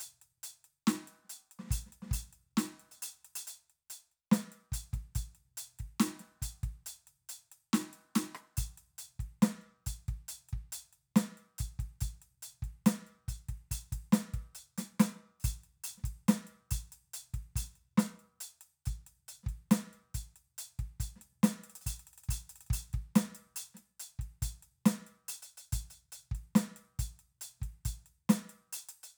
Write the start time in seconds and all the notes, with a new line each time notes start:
0.01 closed hi-hat
0.22 closed hi-hat
0.44 closed hi-hat
0.65 closed hi-hat
0.88 closed hi-hat, snare
1.08 closed hi-hat
1.25 snare
1.30 closed hi-hat
1.52 closed hi-hat
1.60 snare
1.64 snare
1.68 snare
1.71 closed hi-hat, kick, snare
1.87 snare
1.93 closed hi-hat
2.03 snare
2.06 snare
2.09 snare
2.11 closed hi-hat, kick, snare
2.34 closed hi-hat
2.58 closed hi-hat, snare
2.80 closed hi-hat
2.92 closed hi-hat
3.03 closed hi-hat
3.26 closed hi-hat
3.36 closed hi-hat
3.48 closed hi-hat
3.71 closed hi-hat
3.91 closed hi-hat
4.12 closed hi-hat
4.32 closed hi-hat, snare
4.53 closed hi-hat
4.73 closed hi-hat, kick
4.94 kick, snare, closed hi-hat
5.16 closed hi-hat, kick
5.36 closed hi-hat
5.58 closed hi-hat
5.80 kick, closed hi-hat
6.01 closed hi-hat, snare
6.20 snare, closed hi-hat
6.43 closed hi-hat, kick
6.64 kick, closed hi-hat
6.87 closed hi-hat
7.08 closed hi-hat
7.30 closed hi-hat
7.53 closed hi-hat
7.74 closed hi-hat, snare
7.94 closed hi-hat
8.16 closed hi-hat, snare
8.36 cross-stick, closed hi-hat
8.58 closed hi-hat, kick
8.78 closed hi-hat
8.99 closed hi-hat
9.20 kick, closed hi-hat
9.43 closed hi-hat, snare
9.62 closed hi-hat
9.87 closed hi-hat, kick
10.09 kick, closed hi-hat
10.29 closed hi-hat
10.50 closed hi-hat
10.54 kick
10.73 closed hi-hat
10.94 closed hi-hat
11.17 closed hi-hat, snare
11.38 closed hi-hat
11.59 closed hi-hat, kick
11.80 kick, closed hi-hat
12.02 closed hi-hat, kick
12.23 closed hi-hat
12.43 closed hi-hat
12.63 kick, closed hi-hat
12.87 closed hi-hat, snare
13.08 closed hi-hat
13.29 closed hi-hat, kick
13.50 kick, closed hi-hat
13.72 closed hi-hat, kick
13.93 kick, closed hi-hat
14.13 closed hi-hat, snare
14.35 kick, closed hi-hat
14.56 closed hi-hat
14.79 closed hi-hat, snare
15.01 closed hi-hat, snare
15.41 hi-hat pedal
15.45 closed hi-hat, kick
15.64 closed hi-hat
15.85 closed hi-hat
15.98 snare
16.05 kick, closed hi-hat
16.29 closed hi-hat, snare
16.48 closed hi-hat
16.72 closed hi-hat, kick
16.93 closed hi-hat
17.14 closed hi-hat
17.35 kick, closed hi-hat
17.57 closed hi-hat, kick
17.62 snare
17.76 closed hi-hat
17.98 closed hi-hat, snare
18.20 closed hi-hat
18.41 closed hi-hat
18.62 closed hi-hat
18.86 closed hi-hat, kick
19.07 closed hi-hat
19.29 closed hi-hat
19.44 kick, snare
19.50 closed hi-hat
19.72 closed hi-hat, snare
19.94 closed hi-hat
20.15 closed hi-hat, kick
20.37 closed hi-hat
20.59 closed hi-hat
20.80 kick, closed hi-hat
21.01 closed hi-hat, kick
21.17 snare
21.22 closed hi-hat
21.44 closed hi-hat, snare
21.65 closed hi-hat
21.71 closed hi-hat
21.76 closed hi-hat
21.82 closed hi-hat
21.87 closed hi-hat, kick
22.00 closed hi-hat
22.08 closed hi-hat
22.14 closed hi-hat
22.19 closed hi-hat
22.25 closed hi-hat
22.30 closed hi-hat, kick
22.50 closed hi-hat
22.57 closed hi-hat
22.62 closed hi-hat
22.67 kick, closed hi-hat
22.74 closed hi-hat
22.94 kick, closed hi-hat
23.16 closed hi-hat, snare
23.36 closed hi-hat
23.57 closed hi-hat
23.75 snare, closed hi-hat
24.01 closed hi-hat
24.20 kick, closed hi-hat
24.43 closed hi-hat, kick
24.63 closed hi-hat
24.87 closed hi-hat, snare
25.07 closed hi-hat
25.29 closed hi-hat
25.43 closed hi-hat
25.58 closed hi-hat
25.73 closed hi-hat, kick
25.91 closed hi-hat
26.13 closed hi-hat
26.32 kick, closed hi-hat
26.56 closed hi-hat, snare
26.77 closed hi-hat
27.00 closed hi-hat, kick
27.20 closed hi-hat
27.42 closed hi-hat
27.61 kick, snare, closed hi-hat
27.86 closed hi-hat, kick
28.07 closed hi-hat
28.30 closed hi-hat, snare
28.50 closed hi-hat
28.74 closed hi-hat
28.90 closed hi-hat
29.04 closed hi-hat